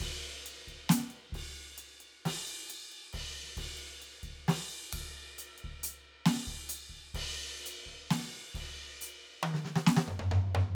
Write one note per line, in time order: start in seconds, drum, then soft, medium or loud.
0.01 kick medium
0.01 snare soft
0.01 crash medium
0.46 closed hi-hat medium
0.57 snare soft
0.68 kick soft
0.68 closed hi-hat soft
0.89 closed hi-hat loud
0.89 snare loud
1.10 closed hi-hat soft
1.29 kick soft
1.29 snare soft
1.34 crash medium
1.55 closed hi-hat soft
1.78 closed hi-hat medium
2.00 closed hi-hat soft
2.25 snare medium
2.25 crash loud
2.30 kick soft
2.47 closed hi-hat soft
2.70 closed hi-hat medium
2.92 closed hi-hat soft
3.13 kick soft
3.13 ride medium
3.43 snare soft
3.48 snare soft
3.54 kick soft
3.54 snare soft
3.54 crash medium
3.77 closed hi-hat soft
4.02 closed hi-hat soft
4.23 kick soft
4.23 closed hi-hat soft
4.48 snare loud
4.48 crash loud
4.69 closed hi-hat soft
4.93 kick soft
4.93 ride loud
5.38 closed hi-hat medium
5.58 closed hi-hat soft
5.64 kick soft
5.83 closed hi-hat loud
6.26 snare loud
6.26 crash medium
6.47 kick soft
6.69 closed hi-hat loud
6.90 kick soft
7.14 kick medium
7.14 ride loud
7.66 closed hi-hat medium
7.86 kick soft
8.11 snare loud
8.11 crash medium
8.55 kick soft
8.55 ride medium
9.01 open hi-hat loud
9.01 hi-hat pedal medium
9.43 high tom loud
9.54 snare medium
9.65 snare medium
9.76 snare loud
9.87 snare loud
9.97 snare loud
10.08 floor tom loud
10.19 floor tom loud
10.31 floor tom loud
10.55 floor tom loud